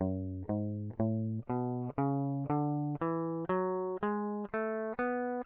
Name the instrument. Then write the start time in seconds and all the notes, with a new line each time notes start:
electric guitar
0.02 F#2
0.51 G#2
1.01 A2
1.51 B2
1.99 C#3
2.50 D3
3.02 E3
3.50 F#3
4.03 G#3
4.54 A3
4.99 B3